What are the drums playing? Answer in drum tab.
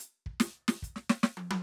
HH |x--x--x-----|
SD |---o-o-ooo--|
T1 |----------oo|
BD |--g---g-----|